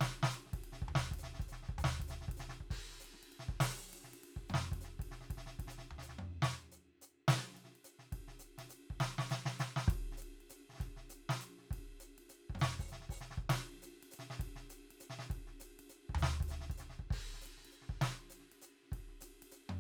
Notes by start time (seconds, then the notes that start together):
0.01 snare, ride
0.23 snare
0.31 hi-hat pedal
0.35 ride
0.47 snare
0.54 kick, ride
0.64 ride
0.73 snare
0.82 kick
0.89 floor tom
0.96 snare
1.12 kick, ride
1.19 hi-hat pedal
1.24 snare
1.34 snare
1.40 kick, ride bell
1.48 snare, hi-hat pedal
1.63 snare
1.69 kick
1.79 floor tom, hi-hat pedal
1.84 snare
2.00 kick, ride
2.08 snare, hi-hat pedal
2.21 snare
2.29 kick, ride
2.37 snare, hi-hat pedal
2.49 snare
2.61 kick
2.71 kick, crash
2.91 snare
3.00 hi-hat pedal
3.05 ride
3.14 cross-stick
3.23 ride
3.32 ride
3.40 snare
3.49 kick
3.60 open hi-hat, snare
3.93 ride
4.04 snare
4.14 ride
4.37 kick
4.49 hi-hat pedal, mid tom
4.54 snare
4.72 kick, ride
4.81 snare, hi-hat pedal
4.91 snare
5.00 kick, ride
5.12 snare
5.21 snare
5.30 kick, ride
5.38 snare
5.47 snare
5.59 kick, ride
5.68 snare, hi-hat pedal
5.78 snare
5.91 floor tom
5.99 snare
6.03 hi-hat pedal
6.09 snare
6.19 mid tom
6.43 snare
6.72 hi-hat pedal
7.02 hi-hat pedal
7.28 snare, ride
7.54 snare, ride
7.64 snare
7.69 snare
7.76 ride
7.85 hi-hat pedal, ride
7.99 snare
8.12 kick, ride
8.28 snare
8.39 hi-hat pedal, ride
8.58 snare, ride
8.70 hi-hat pedal, ride
8.90 kick
9.00 snare, ride
9.19 snare
9.30 snare, hi-hat pedal
9.46 snare
9.59 snare, hi-hat pedal
9.77 snare
9.88 kick, ride
10.12 snare
10.18 hi-hat pedal
10.22 ride
10.41 ride
10.50 hi-hat pedal, ride
10.70 snare
10.73 snare
10.76 snare
10.78 kick, snare, ride
10.97 snare
11.10 hi-hat pedal, ride
11.29 snare, ride
11.41 hi-hat pedal, ride
11.59 snare
11.64 snare
11.71 kick, ride
12.00 hi-hat pedal, ride
12.18 ride
12.30 hi-hat pedal, ride
12.50 kick
12.55 mid tom
12.59 snare, hi-hat pedal
12.80 open hi-hat, kick
12.89 snare, hi-hat pedal
13.02 snare
13.10 open hi-hat, kick
13.18 snare, hi-hat pedal
13.31 snare
13.38 kick
13.50 snare, ride
13.82 hi-hat pedal, ride
14.03 ride
14.12 hi-hat pedal, ride
14.19 snare
14.30 snare
14.40 kick, ride
14.56 snare
14.70 hi-hat pedal, ride
14.91 ride
15.00 hi-hat pedal, ride
15.10 snare
15.19 snare
15.30 kick, ride
15.47 snare
15.60 hi-hat pedal, ride
15.79 ride
15.90 hi-hat pedal, ride
16.10 kick
16.15 floor tom, hi-hat pedal
16.23 snare
16.41 kick, ride
16.48 snare, hi-hat pedal
16.70 kick, ride bell
16.78 snare, hi-hat pedal
16.90 snare
17.00 kick
17.11 kick, crash
17.34 snare
17.42 hi-hat pedal
17.46 ride
17.57 snare
17.65 ride
17.72 hi-hat pedal
17.82 snare
17.89 kick
18.02 snare, ride
18.30 hi-hat pedal, ride
18.40 snare
18.46 snare
18.52 ride
18.62 hi-hat pedal, ride
18.83 snare
18.92 kick, ride
19.08 snare
19.21 hi-hat pedal, ride
19.43 ride
19.52 hi-hat pedal
19.70 mid tom